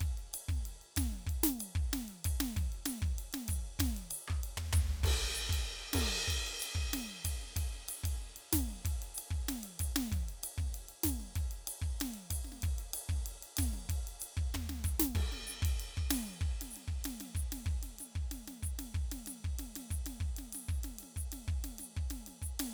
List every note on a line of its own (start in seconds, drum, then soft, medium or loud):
0.01 kick soft
0.01 ride medium
0.18 ride soft
0.34 hi-hat pedal loud
0.34 ride loud
0.49 kick soft
0.49 snare soft
0.66 ride medium
0.82 ride soft
0.97 kick soft
0.97 snare medium
0.97 hi-hat pedal loud
0.97 ride medium
1.12 snare soft
1.27 kick soft
1.27 ride medium
1.44 snare medium
1.60 hi-hat pedal medium
1.60 ride medium
1.76 kick medium
1.93 snare medium
1.93 ride medium
2.09 ride medium
2.25 kick soft
2.25 hi-hat pedal medium
2.25 ride loud
2.41 snare medium
2.57 kick soft
2.57 ride medium
2.72 ride soft
2.86 snare medium
2.86 hi-hat pedal loud
2.86 ride medium
3.02 kick medium
3.19 ride medium
3.33 snare medium
3.33 ride medium
3.49 kick soft
3.49 hi-hat pedal loud
3.49 ride medium
3.80 kick soft
3.80 snare medium
3.80 ride medium
3.97 ride medium
4.11 hi-hat pedal loud
4.11 ride loud
4.28 kick soft
4.28 cross-stick medium
4.44 ride medium
4.58 floor tom medium
4.73 kick medium
4.73 floor tom loud
4.73 hi-hat pedal loud
5.04 kick medium
5.04 crash medium
5.04 ride loud
5.35 hi-hat pedal loud
5.50 kick soft
5.50 ride medium
5.94 kick soft
5.94 snare medium
5.94 hi-hat pedal medium
5.94 ride loud
6.28 kick soft
6.28 ride medium
6.47 ride soft
6.60 hi-hat pedal medium
6.60 ride loud
6.75 kick soft
6.94 snare medium
6.94 ride loud
7.25 kick soft
7.25 hi-hat pedal medium
7.25 ride loud
7.41 snare soft
7.56 kick soft
7.56 ride loud
7.73 snare soft
7.88 hi-hat pedal medium
7.88 ride loud
8.04 kick soft
8.04 ride loud
8.18 snare soft
8.37 ride medium
8.53 kick soft
8.53 snare medium
8.53 hi-hat pedal medium
8.53 ride loud
8.71 snare soft
8.85 kick soft
8.85 ride medium
9.02 ride medium
9.15 hi-hat pedal loud
9.15 ride loud
9.31 kick soft
9.49 snare medium
9.49 ride medium
9.64 ride medium
9.80 kick soft
9.80 hi-hat pedal loud
9.80 ride loud
9.96 snare medium
10.12 kick soft
10.12 ride medium
10.29 ride medium
10.43 hi-hat pedal loud
10.43 ride loud
10.58 kick soft
10.58 snare soft
10.75 ride medium
10.89 ride medium
11.04 kick soft
11.04 snare medium
11.04 hi-hat pedal medium
11.04 ride loud
11.20 snare soft
11.36 kick soft
11.36 ride medium
11.51 ride medium
11.68 hi-hat pedal medium
11.68 ride loud
11.82 kick soft
12.01 snare medium
12.01 ride medium
12.14 ride medium
12.31 kick soft
12.31 hi-hat pedal medium
12.31 ride loud
12.45 snare soft
12.52 snare soft
12.63 kick soft
12.63 ride medium
12.79 ride medium
12.94 hi-hat pedal medium
12.94 ride loud
13.09 kick soft
13.09 snare soft
13.26 ride medium
13.43 ride medium
13.57 kick soft
13.57 snare medium
13.57 hi-hat pedal loud
13.57 ride loud
13.74 snare soft
13.89 kick soft
13.89 ride medium
14.07 ride medium
14.20 hi-hat pedal medium
14.20 ride medium
14.37 kick soft
14.55 snare soft
14.55 floor tom medium
14.70 snare soft
14.85 kick soft
14.85 hi-hat pedal loud
14.85 ride medium
15.00 snare medium
15.15 kick medium
15.15 ride medium
15.32 snare soft
15.47 snare soft
15.47 hi-hat pedal loud
15.63 kick medium
15.63 ride medium
15.80 ride medium
15.97 kick soft
16.10 snare medium
16.10 hi-hat pedal medium
16.10 ride loud
16.30 snare soft
16.41 kick soft
16.62 snare soft
16.62 ride medium
16.71 hi-hat pedal medium
16.76 snare soft
16.76 ride medium
16.88 kick soft
17.05 snare medium
17.05 ride medium
17.21 snare soft
17.21 ride medium
17.35 kick soft
17.35 hi-hat pedal medium
17.52 snare soft
17.52 ride medium
17.66 kick soft
17.83 snare soft
17.83 ride medium
17.99 snare soft
17.99 hi-hat pedal medium
17.99 ride medium
18.16 kick soft
18.32 snare soft
18.32 ride medium
18.48 snare soft
18.48 ride medium
18.63 kick soft
18.63 hi-hat pedal medium
18.79 snare soft
18.79 ride medium
18.95 kick soft
19.12 snare soft
19.12 ride medium
19.27 snare soft
19.27 hi-hat pedal medium
19.27 ride medium
19.45 kick soft
19.59 snare soft
19.59 ride medium
19.76 snare soft
19.76 ride medium
19.91 kick soft
19.91 hi-hat pedal medium
20.06 snare soft
20.06 ride medium
20.21 kick soft
20.37 snare soft
20.37 ride medium
20.53 snare soft
20.53 hi-hat pedal medium
20.53 ride medium
20.69 kick soft
20.84 snare soft
20.84 ride medium
20.99 ride medium
21.03 snare soft
21.17 kick soft
21.17 hi-hat pedal medium
21.32 snare soft
21.32 ride medium
21.48 kick soft
21.64 snare soft
21.64 ride medium
21.79 snare soft
21.79 hi-hat pedal medium
21.79 ride medium
21.97 kick soft
22.11 snare soft
22.11 ride medium
22.27 snare soft
22.27 ride medium
22.42 kick soft
22.42 hi-hat pedal medium
22.60 snare medium
22.60 ride loud